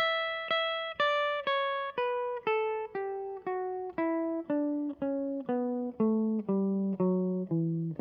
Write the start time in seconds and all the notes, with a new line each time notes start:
0.00 E5
0.51 E5
1.00 D5
1.47 C#5
1.98 B4
2.47 A4
2.96 G4
3.47 F#4
3.98 E4
4.50 D4
5.03 C#4
5.50 B3
6.01 A3
6.50 G3
7.01 F#3
7.52 E3